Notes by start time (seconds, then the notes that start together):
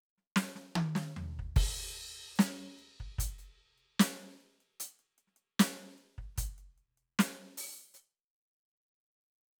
0.18 snare
0.36 snare
0.55 snare
0.76 high tom
0.95 snare
1.16 floor tom
1.39 kick
1.56 kick, crash
2.35 snare, hi-hat pedal
2.40 closed hi-hat
2.59 closed hi-hat
2.79 closed hi-hat
2.99 kick, closed hi-hat
3.18 closed hi-hat, kick
3.38 closed hi-hat
3.78 closed hi-hat
4.00 closed hi-hat, snare
4.20 closed hi-hat
4.40 closed hi-hat
4.60 closed hi-hat
4.80 closed hi-hat
4.99 closed hi-hat
5.18 closed hi-hat
5.27 snare
5.36 closed hi-hat
5.59 closed hi-hat, snare
5.82 snare
5.98 snare, closed hi-hat
6.18 kick, closed hi-hat
6.36 closed hi-hat, kick, snare
6.58 closed hi-hat
6.78 closed hi-hat
6.97 closed hi-hat
7.19 closed hi-hat, snare
7.37 closed hi-hat
7.57 open hi-hat
7.94 hi-hat pedal